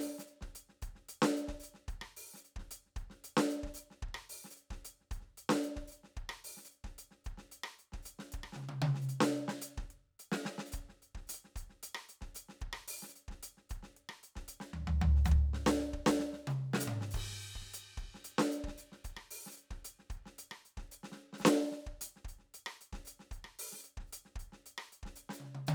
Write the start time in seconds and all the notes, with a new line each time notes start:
0.01 open hi-hat
0.19 snare, hi-hat pedal
0.28 closed hi-hat
0.41 kick, snare
0.55 closed hi-hat
0.69 snare
0.82 closed hi-hat, kick
0.96 snare
1.09 closed hi-hat
1.22 snare
1.37 closed hi-hat
1.48 kick, snare
1.54 kick
1.60 closed hi-hat, hi-hat pedal
1.74 snare
1.88 closed hi-hat, kick
2.02 cross-stick
2.17 open hi-hat
2.34 snare, hi-hat pedal
2.45 closed hi-hat
2.56 kick, snare
2.61 kick
2.71 closed hi-hat
2.86 snare
2.96 closed hi-hat, kick
3.10 snare
3.24 closed hi-hat
3.37 snare
3.50 closed hi-hat
3.64 kick, snare
3.74 closed hi-hat, hi-hat pedal
3.91 snare
4.03 kick
4.09 kick
4.15 cross-stick
4.30 open hi-hat
4.44 snare
4.51 hi-hat pedal
4.57 closed hi-hat
4.71 kick, snare
4.85 closed hi-hat
5.01 snare
5.11 closed hi-hat, kick
5.21 snare
5.27 snare
5.38 closed hi-hat
5.50 snare
5.55 snare
5.63 closed hi-hat
5.76 kick, snare
5.88 closed hi-hat, hi-hat pedal
6.04 snare
6.17 closed hi-hat, kick
6.30 cross-stick
6.45 open hi-hat
6.57 snare
6.65 hi-hat pedal
6.71 closed hi-hat
6.84 kick, snare
6.98 closed hi-hat
7.11 snare
7.25 closed hi-hat, kick
7.38 snare
7.52 closed hi-hat
7.64 cross-stick
7.79 closed hi-hat
7.92 kick, snare
8.03 closed hi-hat, hi-hat pedal
8.19 snare
8.32 kick, closed hi-hat
8.44 cross-stick
8.53 snare, high tom
8.62 snare
8.69 high tom
8.82 high tom
8.95 snare
9.02 hi-hat pedal
9.09 closed hi-hat
9.21 snare
9.48 snare
9.62 closed hi-hat
9.78 kick, snare
9.91 closed hi-hat
10.20 closed hi-hat
10.32 snare
10.46 snare
10.58 snare
10.66 hi-hat pedal
10.72 closed hi-hat, kick
10.89 snare
11.02 closed hi-hat
11.15 kick, snare
11.27 closed hi-hat, hi-hat pedal
11.34 closed hi-hat
11.45 snare
11.56 closed hi-hat, kick
11.70 snare
11.83 closed hi-hat
11.95 cross-stick
12.09 closed hi-hat
12.21 kick, snare
12.35 closed hi-hat, hi-hat pedal
12.49 snare
12.61 kick, closed hi-hat
12.73 cross-stick
12.88 open hi-hat
13.03 snare
13.09 hi-hat pedal
13.16 closed hi-hat
13.28 kick, snare
13.33 kick
13.43 closed hi-hat
13.57 snare
13.70 closed hi-hat, kick
13.79 kick, snare
13.97 closed hi-hat
14.09 cross-stick
14.23 closed hi-hat
14.36 kick, snare
14.42 kick
14.48 closed hi-hat
14.60 snare
14.74 floor tom
14.88 floor tom
15.02 floor tom
15.16 snare
15.25 hi-hat pedal, floor tom
15.32 kick
15.39 kick
15.54 snare
15.67 snare
15.72 hi-hat pedal
15.80 snare
15.93 kick, snare
16.07 snare
16.19 snare
16.33 snare
16.48 hi-hat pedal, high tom
16.74 snare
16.80 snare, hi-hat pedal
16.88 mid tom
17.01 snare
17.11 kick, hi-hat pedal
17.16 crash
17.32 snare
17.41 closed hi-hat
17.56 kick
17.61 snare
17.68 hi-hat pedal
17.74 closed hi-hat
17.98 kick, closed hi-hat
18.03 kick
18.15 snare
18.25 closed hi-hat
18.39 snare
18.52 closed hi-hat
18.64 kick, snare
18.78 hi-hat pedal
18.92 snare
19.05 closed hi-hat, kick
19.17 cross-stick
19.31 open hi-hat
19.46 snare
19.52 hi-hat pedal
19.57 closed hi-hat
19.71 kick, snare
19.85 closed hi-hat
19.99 snare
20.10 closed hi-hat, kick
20.17 kick
20.26 snare
20.39 closed hi-hat
20.52 cross-stick
20.65 closed hi-hat
20.77 kick, snare
20.92 open hi-hat, hi-hat pedal
21.04 snare
21.12 snare
21.16 snare
21.24 snare
21.29 snare
21.33 snare
21.38 kick, snare, hi-hat pedal
21.45 snare
21.72 snare
21.87 kick
22.01 closed hi-hat
22.16 snare
22.25 closed hi-hat, kick
22.39 snare
22.45 snare
22.54 closed hi-hat
22.67 cross-stick
22.81 closed hi-hat
22.93 kick, snare
23.05 closed hi-hat, hi-hat pedal
23.20 snare
23.31 closed hi-hat, kick
23.45 cross-stick
23.59 open hi-hat
23.73 snare
23.80 hi-hat pedal
23.84 closed hi-hat
23.97 kick, snare
24.07 hi-hat pedal
24.13 closed hi-hat
24.25 snare
24.36 closed hi-hat, kick
24.53 snare
24.66 closed hi-hat
24.78 cross-stick
24.83 hi-hat pedal
24.92 closed hi-hat
25.03 kick, snare
25.16 closed hi-hat, hi-hat pedal
25.30 snare
25.34 hi-hat pedal
25.40 high tom
25.45 snare
25.55 high tom
25.67 hi-hat pedal, high tom